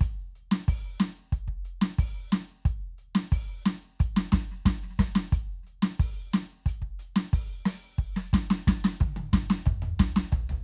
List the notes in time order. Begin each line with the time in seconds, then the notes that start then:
0.01 closed hi-hat, kick
0.36 closed hi-hat
0.52 snare
0.68 open hi-hat, kick
0.99 closed hi-hat, snare, hi-hat pedal
1.33 closed hi-hat, kick
1.48 kick
1.52 crash
1.65 closed hi-hat
1.82 snare
1.99 open hi-hat, kick
2.30 closed hi-hat, snare, hi-hat pedal
2.65 closed hi-hat, kick
2.98 closed hi-hat
3.15 snare
3.32 open hi-hat, kick
3.62 snare, hi-hat pedal
3.66 closed hi-hat
4.00 closed hi-hat, kick
4.17 snare
4.32 kick, snare
4.52 snare
4.60 snare
4.62 kick, snare, hi-hat pedal
4.66 snare
4.83 snare
4.90 snare
4.98 kick, snare, hi-hat pedal
5.15 snare
5.33 closed hi-hat, kick
5.63 closed hi-hat, snare
5.83 snare
6.00 open hi-hat, kick
6.32 closed hi-hat, snare, hi-hat pedal
6.66 closed hi-hat, kick
6.82 kick
6.99 closed hi-hat
7.16 snare
7.33 open hi-hat, kick
7.66 open hi-hat, snare
7.98 kick
8.16 snare
8.33 kick, snare
8.50 snare
8.68 kick, snare
8.84 snare
9.01 kick, high tom
9.16 high tom
9.33 kick, snare
9.50 snare
9.66 kick, mid tom
9.82 mid tom
10.00 kick, snare
10.16 snare
10.32 kick, floor tom
10.49 floor tom